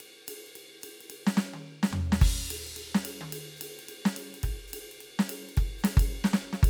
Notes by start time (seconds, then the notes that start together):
0.27 hi-hat pedal, ride
0.47 ride
0.56 ride
0.81 hi-hat pedal, ride
1.01 ride
1.10 ride
1.27 snare, hi-hat pedal
1.37 snare
1.54 high tom
1.83 snare, hi-hat pedal
1.91 kick, floor tom
2.04 hi-hat pedal
2.12 snare
2.21 kick, crash
2.46 hi-hat pedal
2.51 ride
2.67 ride
2.76 ride
2.95 snare, hi-hat pedal
3.05 ride
3.21 high tom
3.33 ride
3.56 hi-hat pedal
3.61 ride
3.79 ride
3.89 ride
4.05 snare, hi-hat pedal
4.16 ride
4.34 ride
4.43 kick, ride
4.68 hi-hat pedal
4.73 ride
4.92 ride
5.01 ride
5.19 snare, hi-hat pedal
5.29 ride
5.49 ride
5.57 kick, ride
5.79 hi-hat pedal
5.84 snare, ride
5.97 kick, ride
6.24 snare, hi-hat pedal
6.33 snare
6.53 snare
6.63 kick, ride